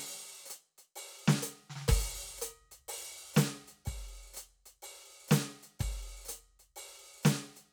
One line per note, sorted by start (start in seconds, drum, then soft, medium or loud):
0.45 hi-hat pedal medium
0.50 closed hi-hat medium
0.78 closed hi-hat soft
0.96 open hi-hat medium
1.28 snare loud
1.28 hi-hat pedal medium
1.42 closed hi-hat loud
1.70 snare soft
1.76 snare medium
1.81 snare soft
1.87 open hi-hat loud
1.87 kick loud
1.87 snare soft
2.38 closed hi-hat loud
2.38 hi-hat pedal medium
2.71 closed hi-hat soft
2.88 open hi-hat loud
3.34 closed hi-hat loud
3.34 snare loud
3.34 hi-hat pedal medium
3.68 closed hi-hat soft
3.85 open hi-hat medium
3.85 kick medium
4.34 closed hi-hat medium
4.34 hi-hat pedal medium
4.66 closed hi-hat soft
4.82 open hi-hat medium
5.28 closed hi-hat loud
5.28 snare loud
5.28 hi-hat pedal medium
5.63 closed hi-hat soft
5.79 open hi-hat medium
5.79 kick medium
6.25 closed hi-hat loud
6.25 hi-hat pedal medium
6.59 closed hi-hat soft
6.76 open hi-hat medium
7.23 closed hi-hat loud
7.23 snare loud
7.23 hi-hat pedal medium
7.56 closed hi-hat soft